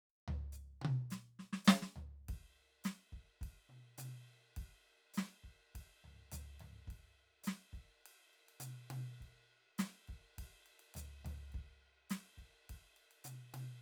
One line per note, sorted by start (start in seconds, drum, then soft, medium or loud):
0.28 floor tom medium
0.52 hi-hat pedal soft
0.81 high tom medium
0.85 high tom loud
1.10 snare medium
1.10 hi-hat pedal soft
1.39 snare soft
1.53 snare medium
1.65 snare loud
1.65 hi-hat pedal medium
1.82 snare medium
1.96 floor tom soft
2.28 kick soft
2.28 ride medium
2.84 snare medium
2.84 hi-hat pedal medium
2.84 ride soft
3.12 kick soft
3.41 kick soft
3.41 ride soft
3.69 high tom soft
3.98 hi-hat pedal medium
3.98 high tom medium
3.98 ride medium
4.56 kick soft
4.56 ride medium
5.14 snare medium
5.14 hi-hat pedal medium
5.19 ride medium
5.44 kick soft
5.75 kick soft
5.75 ride medium
6.04 floor tom soft
6.32 floor tom soft
6.32 hi-hat pedal medium
6.32 ride medium
6.60 floor tom soft
6.60 ride soft
6.87 kick soft
6.87 ride soft
7.44 snare medium
7.44 hi-hat pedal medium
7.44 ride medium
7.73 kick soft
7.73 ride soft
8.06 ride medium
8.33 ride soft
8.48 ride soft
8.60 hi-hat pedal medium
8.60 high tom medium
8.60 ride medium
8.90 high tom medium
8.90 ride medium
9.20 kick soft
9.20 ride soft
9.78 snare medium
9.78 hi-hat pedal medium
9.78 ride medium
10.08 kick soft
10.08 ride soft
10.38 kick soft
10.38 ride medium
10.66 ride soft
10.79 ride soft
10.94 floor tom soft
10.94 hi-hat pedal medium
10.94 ride soft
11.25 floor tom medium
11.25 ride soft
11.52 kick soft
11.52 ride soft
12.10 snare medium
12.10 hi-hat pedal medium
12.10 ride medium
12.37 kick soft
12.37 ride soft
12.69 kick soft
12.69 ride medium
12.96 ride soft
13.11 ride soft
13.24 hi-hat pedal medium
13.24 high tom soft
13.24 ride soft
13.54 high tom medium
13.54 ride medium